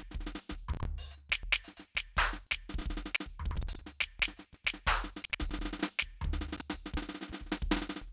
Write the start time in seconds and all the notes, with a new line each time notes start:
0.01 kick, snare
0.10 snare
0.16 snare
0.24 snare
0.34 hi-hat pedal
0.50 kick, snare
0.69 kick, floor tom
0.87 open hi-hat
1.00 hi-hat pedal
1.07 snare
1.19 kick, snare
1.38 kick, snare
1.53 snare
1.65 snare, hi-hat pedal
1.84 kick, snare
2.06 kick, percussion
2.22 snare
2.36 snare, hi-hat pedal
2.52 kick, snare
2.70 snare
2.75 kick
2.79 snare
2.86 snare
2.95 snare
3.04 snare
3.10 hi-hat pedal
3.21 snare
3.27 kick
3.40 floor tom
3.46 kick
3.58 closed hi-hat
3.76 snare, hi-hat pedal
3.90 kick, snare
4.09 kick, snare
4.23 snare
4.29 snare
4.38 snare, hi-hat pedal
4.54 kick, snare
4.63 snare
4.76 kick, percussion
4.93 snare
5.06 snare, hi-hat pedal
5.22 kick, snare
5.41 kick, snare
5.51 snare
5.54 snare
5.62 snare
5.69 snare
5.72 snare, hi-hat pedal
5.88 kick, snare
6.11 kick, floor tom
6.22 snare
6.30 snare
6.38 snare
6.42 snare, hi-hat pedal
6.59 kick, snare
6.75 snare
6.83 kick
6.93 snare
6.96 snare
7.03 snare
7.10 snare, hi-hat pedal
7.15 snare
7.22 snare
7.23 snare
7.29 kick, snare
7.36 snare
7.41 snare
7.51 kick
7.61 snare
7.66 snare
7.71 snare
7.79 snare, hi-hat pedal
7.85 snare
7.93 snare
7.94 kick, snare
8.01 snare
8.08 snare